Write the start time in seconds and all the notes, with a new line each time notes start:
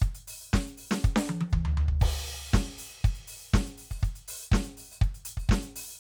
0.01 kick, closed hi-hat, hi-hat pedal
0.16 closed hi-hat
0.28 open hi-hat
0.42 open hi-hat
0.53 kick, snare, hi-hat pedal
0.68 closed hi-hat
0.78 open hi-hat
0.92 snare
1.02 closed hi-hat, kick, hi-hat pedal
1.17 snare
1.30 high tom
1.42 high tom
1.51 kick, floor tom, hi-hat pedal
1.66 floor tom
1.78 floor tom
1.89 kick
2.01 kick, hi-hat pedal, crash
2.27 open hi-hat
2.51 kick, snare, hi-hat pedal
2.72 closed hi-hat
2.78 open hi-hat, kick
2.90 open hi-hat
3.00 hi-hat pedal
3.05 closed hi-hat, kick
3.16 closed hi-hat
3.28 open hi-hat
3.40 open hi-hat
3.52 kick, snare, hi-hat pedal
3.67 closed hi-hat
3.78 open hi-hat
3.91 open hi-hat, kick
4.00 kick, hi-hat pedal
4.05 closed hi-hat
4.16 closed hi-hat
4.29 open hi-hat
4.41 open hi-hat, hi-hat pedal
4.53 kick, snare
4.65 closed hi-hat
4.78 open hi-hat
4.92 open hi-hat
4.96 hi-hat pedal
5.02 kick, closed hi-hat
5.15 closed hi-hat
5.26 open hi-hat
5.38 open hi-hat, kick
5.49 kick, snare, hi-hat pedal
5.63 closed hi-hat
5.77 open hi-hat
5.89 open hi-hat
5.96 hi-hat pedal